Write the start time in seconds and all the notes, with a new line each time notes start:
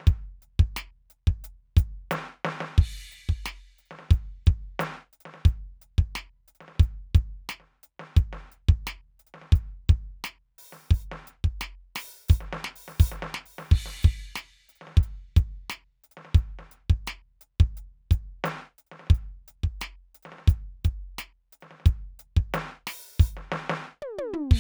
0.01 snare
0.07 kick, snare, closed hi-hat
0.42 closed hi-hat
0.60 kick
0.77 closed hi-hat, snare
1.11 closed hi-hat
1.28 kick
1.44 closed hi-hat
1.77 kick, closed hi-hat
2.12 closed hi-hat, snare
2.19 snare
2.45 snare
2.61 snare
2.78 kick, crash
3.12 closed hi-hat
3.29 kick, snare
3.46 closed hi-hat, snare
3.79 closed hi-hat
3.86 closed hi-hat
3.91 snare
3.99 snare
4.09 kick, snare
4.13 closed hi-hat
4.47 kick, closed hi-hat
4.80 closed hi-hat, snare
5.13 closed hi-hat
5.21 closed hi-hat
5.26 snare
5.34 snare
5.46 kick, closed hi-hat
5.82 closed hi-hat
5.99 kick
6.16 snare, closed hi-hat
6.48 closed hi-hat
6.55 closed hi-hat
6.61 snare, closed hi-hat
6.68 snare
6.76 snare
6.80 kick, closed hi-hat
7.15 closed hi-hat, kick
7.49 closed hi-hat, snare
7.60 snare
7.84 closed hi-hat
8.00 snare
8.17 closed hi-hat, kick
8.33 snare
8.52 closed hi-hat
8.69 kick
8.87 closed hi-hat, snare
9.20 closed hi-hat
9.27 closed hi-hat
9.35 snare
9.42 snare
9.53 kick, snare, closed hi-hat
9.89 kick, snare, closed hi-hat
10.24 closed hi-hat, snare
10.59 open hi-hat
10.73 snare
10.91 kick, open hi-hat
11.02 hi-hat pedal
11.12 snare
11.28 closed hi-hat
11.45 kick
11.61 snare, closed hi-hat
11.96 open hi-hat, snare
12.29 open hi-hat, kick, hi-hat pedal
12.41 snare
12.53 snare
12.65 snare
12.76 open hi-hat
12.88 snare
13.00 open hi-hat, kick
13.08 hi-hat pedal
13.12 snare
13.23 snare
13.35 snare
13.46 open hi-hat
13.59 snare
13.72 kick, crash
13.86 snare
14.03 closed hi-hat, kick
14.36 closed hi-hat, snare
14.69 closed hi-hat
14.76 closed hi-hat
14.82 snare
14.87 snare
14.92 snare
14.97 kick, snare
15.03 closed hi-hat, snare
15.37 closed hi-hat, kick
15.70 closed hi-hat, snare
16.04 closed hi-hat
16.12 closed hi-hat
16.17 snare
16.25 snare
16.35 kick, snare, closed hi-hat
16.59 snare
16.72 closed hi-hat
16.90 kick
17.07 closed hi-hat, snare
17.41 closed hi-hat
17.60 kick
17.77 closed hi-hat
18.11 kick, closed hi-hat
18.44 closed hi-hat, snare
18.79 closed hi-hat
18.87 closed hi-hat
18.92 snare
19.00 snare
19.07 kick, snare
19.15 snare, closed hi-hat
19.48 closed hi-hat
19.64 kick
19.81 closed hi-hat, snare
20.15 closed hi-hat
20.23 snare, closed hi-hat
20.32 snare
20.39 snare
20.48 closed hi-hat, kick
20.85 closed hi-hat, kick
21.19 closed hi-hat, snare
21.53 closed hi-hat
21.61 snare, closed hi-hat
21.71 snare
21.80 snare
21.86 closed hi-hat, kick
22.20 closed hi-hat
22.37 kick
22.54 open hi-hat, snare
22.87 open hi-hat, snare
23.20 open hi-hat, kick
23.37 snare
23.52 snare
23.70 snare
24.02 high tom
24.19 high tom
24.33 floor tom
24.51 kick, crash